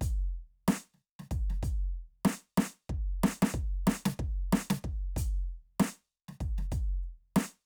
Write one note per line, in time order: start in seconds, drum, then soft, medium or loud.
0.01 closed hi-hat loud
0.01 kick medium
0.68 closed hi-hat loud
0.68 snare loud
0.94 snare soft
1.19 snare soft
1.31 kick medium
1.31 closed hi-hat medium
1.50 snare soft
1.63 closed hi-hat medium
1.63 kick medium
2.25 snare loud
2.57 snare loud
2.89 kick medium
3.23 snare loud
3.42 snare loud
3.54 kick medium
3.87 snare loud
4.05 snare loud
4.19 kick medium
4.53 snare loud
4.70 snare loud
4.84 kick medium
5.16 closed hi-hat loud
5.16 kick medium
5.80 snare loud
5.80 closed hi-hat medium
6.28 snare soft
6.40 kick medium
6.40 closed hi-hat soft
6.58 snare soft
6.72 closed hi-hat medium
6.72 kick medium
7.03 closed hi-hat soft
7.36 closed hi-hat medium
7.36 snare loud